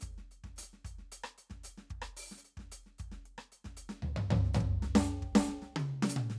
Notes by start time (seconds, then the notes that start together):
0.01 closed hi-hat, kick
0.18 snare
0.31 closed hi-hat
0.44 kick, snare
0.56 closed hi-hat, hi-hat pedal
0.63 closed hi-hat
0.73 snare
0.85 closed hi-hat, kick
0.99 snare
1.12 closed hi-hat
1.24 cross-stick
1.38 closed hi-hat
1.50 kick, snare
1.64 closed hi-hat, hi-hat pedal
1.78 snare
1.90 kick, closed hi-hat
2.02 cross-stick
2.17 open hi-hat
2.31 snare
2.38 hi-hat pedal
2.45 closed hi-hat
2.57 kick, snare
2.62 kick
2.72 closed hi-hat
2.86 snare
2.98 closed hi-hat, kick
3.08 kick, snare
3.26 closed hi-hat
3.38 cross-stick
3.52 closed hi-hat
3.65 kick, snare
3.70 kick
3.77 closed hi-hat
3.89 snare
4.02 floor tom
4.16 floor tom
4.31 floor tom
4.45 snare
4.54 hi-hat pedal, floor tom
4.60 kick
4.67 kick
4.82 snare
4.95 snare
5.01 hi-hat pedal
5.08 snare
5.22 kick, snare
5.35 snare
5.48 snare
5.62 snare
5.76 hi-hat pedal, high tom
6.03 snare
6.09 snare, hi-hat pedal
6.16 mid tom
6.30 snare